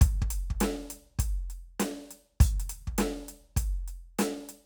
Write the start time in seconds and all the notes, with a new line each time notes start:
0.01 kick, closed hi-hat
0.22 kick
0.30 closed hi-hat
0.50 kick
0.60 snare, closed hi-hat
0.90 closed hi-hat
1.19 kick, closed hi-hat
1.50 closed hi-hat
1.79 snare, closed hi-hat
2.11 closed hi-hat
2.40 closed hi-hat, kick
2.60 closed hi-hat
2.69 closed hi-hat
2.87 kick
2.98 snare, closed hi-hat
3.28 closed hi-hat
3.56 kick, closed hi-hat
3.88 closed hi-hat
4.19 closed hi-hat, snare
4.49 closed hi-hat